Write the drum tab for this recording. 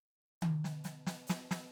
HH |--p-p-p-|
SD |---ooooo|
T1 |--o-----|